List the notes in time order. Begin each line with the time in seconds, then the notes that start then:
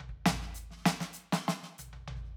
0.00 floor tom
0.09 kick
0.26 snare, floor tom
0.41 snare
0.54 hi-hat pedal
0.71 snare
0.76 snare
0.80 snare
0.85 snare
1.00 snare
1.13 snare, hi-hat pedal
1.32 snare
1.48 snare
1.62 snare
1.78 floor tom, hi-hat pedal
1.93 floor tom
2.08 floor tom
2.15 snare
2.24 snare